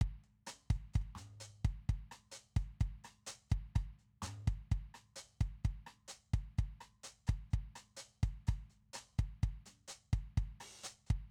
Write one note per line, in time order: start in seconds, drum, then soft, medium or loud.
0.01 kick soft
0.24 closed hi-hat soft
0.47 open hi-hat soft
0.47 cross-stick soft
0.47 snare soft
0.47 hi-hat pedal medium
0.70 closed hi-hat soft
0.70 kick soft
0.76 kick soft
0.94 closed hi-hat soft
0.94 kick soft
1.01 kick soft
1.15 closed hi-hat soft
1.15 snare soft
1.15 mid tom soft
1.40 closed hi-hat soft
1.40 hi-hat pedal medium
1.65 closed hi-hat soft
1.65 kick soft
1.89 closed hi-hat soft
1.89 kick soft
2.11 closed hi-hat soft
2.11 cross-stick soft
2.32 closed hi-hat soft
2.32 hi-hat pedal medium
2.56 closed hi-hat soft
2.56 kick soft
2.80 closed hi-hat soft
2.80 kick soft
3.04 open hi-hat medium
3.04 cross-stick soft
3.27 closed hi-hat soft
3.27 hi-hat pedal medium
3.50 closed hi-hat soft
3.50 kick soft
3.75 open hi-hat soft
3.75 kick soft
3.75 cross-stick soft
3.75 snare soft
3.99 closed hi-hat soft
4.22 closed hi-hat soft
4.22 snare soft
4.22 hi-hat pedal medium
4.22 mid tom soft
4.28 cross-stick soft
4.47 closed hi-hat soft
4.47 kick soft
4.71 closed hi-hat soft
4.71 kick soft
4.94 closed hi-hat soft
4.94 cross-stick soft
5.16 closed hi-hat soft
5.16 hi-hat pedal medium
5.41 closed hi-hat soft
5.41 kick soft
5.64 closed hi-hat soft
5.64 kick soft
5.86 closed hi-hat soft
5.86 cross-stick soft
5.86 snare soft
6.08 closed hi-hat soft
6.08 hi-hat pedal medium
6.34 closed hi-hat soft
6.34 kick soft
6.58 closed hi-hat soft
6.58 kick soft
6.81 closed hi-hat soft
6.81 cross-stick soft
7.03 closed hi-hat soft
7.03 hi-hat pedal medium
7.27 closed hi-hat soft
7.27 kick soft
7.27 cross-stick soft
7.50 open hi-hat soft
7.50 kick soft
7.75 closed hi-hat soft
7.75 cross-stick soft
7.97 closed hi-hat soft
7.97 hi-hat pedal medium
8.23 closed hi-hat soft
8.23 kick soft
8.47 closed hi-hat soft
8.47 kick soft
8.47 cross-stick soft
8.70 closed hi-hat soft
8.93 closed hi-hat soft
8.93 cross-stick soft
8.93 hi-hat pedal medium
9.18 closed hi-hat soft
9.18 kick soft
9.43 closed hi-hat soft
9.43 kick soft
9.66 closed hi-hat medium
9.66 snare soft
9.88 closed hi-hat soft
9.88 hi-hat pedal medium
10.13 closed hi-hat soft
10.13 kick soft
10.37 closed hi-hat soft
10.37 kick soft
10.60 open hi-hat medium
10.60 cross-stick soft
10.60 snare soft
10.84 hi-hat pedal medium
11.06 closed hi-hat soft
11.06 kick soft